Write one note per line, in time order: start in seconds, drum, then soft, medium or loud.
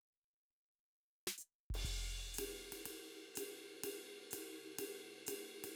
1.27 snare medium
1.38 hi-hat pedal medium
1.70 kick soft
1.70 ride medium
1.85 kick soft
1.85 crash medium
2.34 hi-hat pedal medium
2.38 ride loud
2.72 ride medium
2.85 ride medium
3.35 hi-hat pedal medium
3.35 ride medium
3.83 hi-hat pedal soft
3.83 ride medium
4.31 hi-hat pedal medium
4.31 ride medium
4.79 ride medium
5.26 hi-hat pedal medium
5.26 ride medium
5.64 ride medium